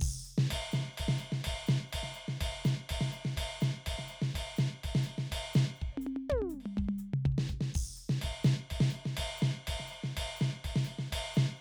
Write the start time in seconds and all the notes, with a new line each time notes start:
0.01 kick, crash
0.09 kick
0.14 kick
0.25 hi-hat pedal
0.39 snare
0.51 kick, ride bell
0.72 snare, hi-hat pedal
0.80 snare
0.94 hi-hat pedal
0.98 kick, ride bell
1.09 snare
1.19 hi-hat pedal, ride
1.33 snare
1.45 kick, ride bell
1.53 kick
1.67 snare, hi-hat pedal
1.89 hi-hat pedal
1.93 kick, ride bell
2.00 kick, snare
2.14 hi-hat pedal, ride
2.29 snare
2.41 kick, ride bell
2.48 kick
2.65 snare, hi-hat pedal
2.90 kick, ride bell
2.97 kick
3.01 snare
3.12 hi-hat pedal, ride
3.26 snare
3.37 kick, ride bell
3.43 kick
3.61 snare, hi-hat pedal
3.87 kick, ride bell
3.93 kick
3.99 snare
4.08 hi-hat pedal, ride
4.22 snare
4.31 hi-hat pedal
4.35 kick, ride bell
4.41 kick
4.57 snare, hi-hat pedal
4.84 kick, ride bell
4.90 kick
4.96 snare
5.03 hi-hat pedal, ride
5.19 snare
5.32 kick, ride bell
5.38 kick
5.53 snare, hi-hat pedal
5.76 hi-hat pedal
5.82 kick
5.88 kick
5.93 high tom
5.98 hi-hat pedal, high tom
6.07 high tom
6.17 high tom
6.30 kick, high tom
6.39 kick, high tom
6.50 hi-hat pedal
6.55 mid tom
6.61 ride
6.66 mid tom
6.78 kick, mid tom
6.85 kick
6.89 mid tom
6.99 hi-hat pedal
7.14 floor tom
7.26 kick, floor tom
7.33 kick
7.39 snare
7.49 kick, hi-hat pedal
7.61 snare
7.75 kick, crash
7.88 kick
7.97 hi-hat pedal
8.10 snare
8.22 kick, ride bell
8.30 kick
8.44 snare, hi-hat pedal
8.71 kick, ride bell
8.81 snare
8.91 hi-hat pedal, ride
9.06 snare
9.17 kick, ride bell
9.24 kick
9.38 hi-hat pedal
9.43 snare
9.68 kick, ride bell
9.74 kick
9.80 snare
9.88 hi-hat pedal
9.93 ride
10.04 snare
10.17 kick, ride bell
10.37 hi-hat pedal
10.42 snare
10.65 kick, ride bell
10.71 kick
10.76 snare
10.85 hi-hat pedal, ride
10.99 snare
11.08 hi-hat pedal
11.13 kick, ride bell
11.18 kick
11.34 snare, hi-hat pedal
11.56 hi-hat pedal